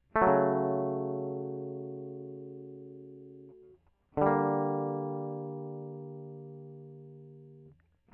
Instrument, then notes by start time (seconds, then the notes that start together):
electric guitar
0.17 A3
0.23 F#3
0.29 C#3
4.19 D3 G3
4.27 A#3